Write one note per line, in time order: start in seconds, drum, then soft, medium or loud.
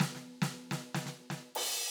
0.00 snare loud
0.15 snare medium
0.42 snare loud
0.71 snare loud
0.94 snare loud
1.06 snare medium
1.30 snare medium
1.55 crash loud